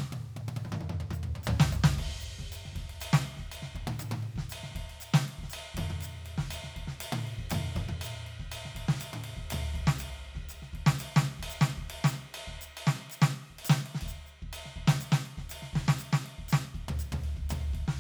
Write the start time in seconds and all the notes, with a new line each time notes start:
0.01 snare
0.13 high tom
0.37 high tom
0.49 high tom
0.57 high tom
0.65 mid tom
0.73 mid tom
0.81 mid tom
0.90 mid tom
1.01 floor tom
1.11 mid tom, percussion
1.24 floor tom
1.36 floor tom
1.44 kick, percussion, floor tom
1.60 snare
1.71 kick, percussion, floor tom
1.84 snare
1.98 kick, ride
2.09 kick, cross-stick
2.11 kick
2.16 snare
2.21 percussion
2.39 kick, snare
2.47 kick
2.52 ride bell, percussion
2.66 snare
2.74 kick, snare, ride
2.78 snare
2.81 kick, snare
2.90 ride
3.01 ride bell, percussion
3.14 snare
3.27 ride
3.37 kick, snare
3.52 ride bell, percussion
3.63 snare
3.75 kick, high tom
3.81 kick
3.88 high tom
4.00 high tom, percussion
4.12 high tom
4.23 high tom
4.36 kick, snare
4.47 kick, percussion
4.53 ride bell
4.64 snare
4.72 kick, snare
4.77 snare, ride
4.81 kick, snare
4.85 snare
4.90 ride bell
5.01 ride bell, percussion
5.14 snare
5.29 ride
5.39 kick
5.44 kick, snare
5.50 ride bell, percussion
5.75 kick, mid tom, ride
5.90 mid tom
6.01 ride, percussion
6.25 ride, percussion
6.38 kick, snare
6.51 ride bell, percussion
6.64 snare
6.77 kick, ride
6.88 snare
7.01 ride, percussion
7.13 high tom
7.27 ride bell
7.39 kick
7.48 kick, ride, percussion
7.52 mid tom
7.76 kick, mid tom, ride bell
7.82 kick
7.89 mid tom
8.02 ride bell, percussion
8.27 ride
8.40 kick, snare
8.52 ride bell, percussion
8.66 snare
8.76 kick, ride
8.89 snare
9.01 ride, percussion
9.14 high tom
9.24 ride
9.37 kick
9.43 kick
9.51 floor tom, ride, percussion
9.75 kick, ride
9.81 kick
9.88 snare
9.99 ride, percussion
10.26 ride
10.36 kick, snare
10.49 ride bell, percussion
10.63 snare
10.74 kick, ride
10.79 kick
10.87 snare
10.99 ride, percussion
11.17 snare
11.23 snare
11.40 kick, ride bell
11.50 percussion
11.62 snare
11.69 snare
11.78 kick
11.84 kick
11.90 ride
12.05 snare, percussion
12.14 snare
12.35 ride bell
12.48 kick
12.62 percussion
12.78 ride bell
12.87 snare
12.96 snare
13.10 ride, percussion
13.22 snare
13.33 percussion
13.51 kick
13.59 ride bell
13.65 percussion
13.70 snare
13.86 ride
13.95 snare
14.02 kick, ride bell
14.09 percussion
14.27 percussion
14.43 kick
14.53 ride bell, percussion
14.66 snare
14.76 kick, ride
14.82 kick
14.88 snare
15.01 ride, percussion
15.12 snare
15.26 ride
15.38 kick, snare
15.43 kick
15.50 ride, percussion
15.63 snare
15.74 kick, snare
15.80 kick
15.89 snare
15.99 ride, percussion
16.13 snare
16.26 ride
16.39 kick
16.47 kick, percussion
16.53 snare, ride bell
16.75 kick, ride bell
16.81 kick
16.89 floor tom
17.00 ride bell, percussion
17.13 floor tom
17.20 ride bell, percussion
17.37 kick
17.50 floor tom, ride bell, percussion
17.62 floor tom
17.74 kick, ride
17.80 kick
17.88 snare